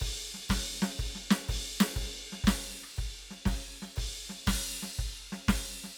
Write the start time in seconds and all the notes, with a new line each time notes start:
0.01 kick, ride
0.34 snare
0.49 kick, snare, hi-hat pedal, ride
0.82 snare
0.99 kick, ride
1.15 snare
1.31 snare
1.49 kick, hi-hat pedal, ride
1.80 snare, ride
1.96 kick, ride
2.33 snare
2.44 kick, snare, hi-hat pedal, crash
2.84 cross-stick
2.97 kick, ride
3.31 snare
3.46 kick, snare, hi-hat pedal, crash
3.82 snare
3.96 kick, ride
4.30 snare
4.47 kick, snare, hi-hat pedal, crash
4.83 snare
4.98 kick, ride
5.32 snare
5.47 kick, snare, hi-hat pedal, crash
5.84 snare